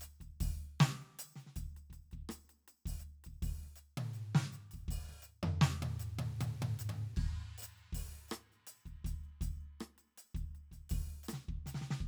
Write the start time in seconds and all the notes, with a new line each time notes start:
0.01 percussion
0.03 percussion
0.20 kick, percussion
0.40 kick, percussion
0.80 snare, percussion
1.01 percussion
1.19 percussion
1.36 snare
1.40 percussion
1.46 snare
1.56 kick, percussion
1.76 percussion
1.90 kick, percussion
2.11 kick, percussion
2.29 cross-stick, percussion
2.49 percussion
2.68 percussion
2.85 kick, percussion
3.00 percussion
3.24 kick, percussion
3.42 kick, percussion
3.63 snare
3.76 percussion
3.97 high tom
4.13 percussion
4.35 snare
4.52 snare, percussion
4.71 kick, percussion
4.88 kick, percussion
5.09 snare
5.22 percussion
5.43 mid tom
5.61 snare, percussion
5.82 high tom
6.00 percussion
6.19 high tom
6.41 high tom, percussion
6.62 high tom
6.79 percussion
6.89 high tom
7.16 kick, crash
7.58 percussion
7.62 percussion
7.77 percussion
7.93 kick, percussion
8.28 cross-stick, percussion
8.33 percussion
8.52 percussion
8.67 percussion
8.85 kick, percussion
9.04 kick, percussion
9.24 percussion
9.41 kick, percussion
9.61 percussion
9.80 cross-stick, percussion
9.98 percussion
10.18 percussion
10.35 kick, percussion
10.55 percussion
10.71 kick, percussion
10.89 kick, percussion
11.23 percussion
11.28 cross-stick, percussion
11.33 snare
11.48 kick
11.66 snare, percussion
11.74 snare
11.81 snare
11.90 snare
12.00 kick